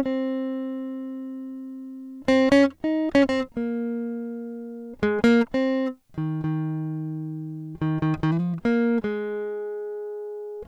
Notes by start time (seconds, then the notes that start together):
0.01 C4
2.29 C4
2.54 C#4
2.85 D#4
3.16 C#4
3.31 C4
3.58 A#3
5.04 G#3
5.25 A#3
5.56 C4
6.20 D#3
6.46 D#3
7.83 D#3
8.04 D#3
8.24 D#3
8.34 F3
8.66 A#3
9.06 G#3